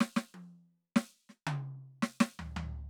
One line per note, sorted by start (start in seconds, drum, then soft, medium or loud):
0.00 snare loud
0.16 snare loud
0.34 high tom medium
0.96 snare loud
1.29 snare soft
1.47 mid tom loud
2.02 snare medium
2.20 snare loud
2.39 floor tom medium
2.56 floor tom medium